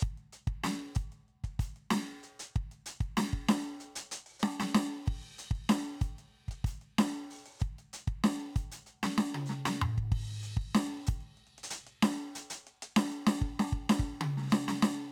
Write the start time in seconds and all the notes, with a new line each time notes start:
0.01 open hi-hat, kick, hi-hat pedal
0.17 closed hi-hat
0.33 closed hi-hat
0.47 kick, closed hi-hat
0.64 snare
0.79 closed hi-hat
0.95 closed hi-hat, kick
1.12 closed hi-hat
1.28 closed hi-hat
1.44 kick, closed hi-hat
1.59 closed hi-hat, kick
1.76 closed hi-hat
1.91 snare
1.95 snare
2.07 closed hi-hat
2.23 closed hi-hat
2.39 closed hi-hat
2.56 kick, closed hi-hat
2.71 closed hi-hat
2.86 closed hi-hat
3.00 kick, closed hi-hat
3.17 snare
3.33 kick, closed hi-hat
3.49 snare
3.64 closed hi-hat
3.80 closed hi-hat
3.96 closed hi-hat
4.11 closed hi-hat
4.26 open hi-hat
4.39 snare, hi-hat pedal
4.60 snare
4.75 snare
5.06 kick, crash
5.23 closed hi-hat
5.38 closed hi-hat
5.51 kick
5.55 kick, closed hi-hat
5.69 snare
5.86 closed hi-hat
6.01 closed hi-hat, kick
6.18 closed hi-hat
6.36 closed hi-hat
6.48 kick, closed hi-hat
6.64 closed hi-hat, kick
6.81 closed hi-hat
6.98 snare
7.15 closed hi-hat
7.30 open hi-hat
7.46 open hi-hat
7.60 closed hi-hat, kick, hi-hat pedal
7.78 closed hi-hat
7.93 closed hi-hat
8.07 kick, closed hi-hat
8.24 snare
8.40 closed hi-hat
8.56 closed hi-hat, kick
8.72 closed hi-hat
8.86 closed hi-hat
9.03 snare
9.18 snare
9.34 high tom
9.46 snare, hi-hat pedal
9.65 snare
9.81 mid tom
9.98 kick
10.12 kick, crash
10.27 closed hi-hat
10.43 closed hi-hat
10.57 kick
10.61 closed hi-hat
10.75 snare
10.91 closed hi-hat
11.07 closed hi-hat, kick
11.21 closed hi-hat
11.37 closed hi-hat
11.47 closed hi-hat
11.58 closed hi-hat
11.63 closed hi-hat
11.70 closed hi-hat
11.87 closed hi-hat
12.03 snare
12.18 closed hi-hat
12.35 closed hi-hat
12.50 closed hi-hat
12.67 closed hi-hat
12.82 closed hi-hat
12.96 snare
13.12 closed hi-hat
13.27 snare
13.41 kick
13.59 snare
13.72 kick
13.89 snare
13.99 kick
14.09 hi-hat pedal
14.21 closed hi-hat, high tom
14.37 snare
14.42 snare
14.46 snare
14.50 snare, hi-hat pedal
14.68 snare
14.83 snare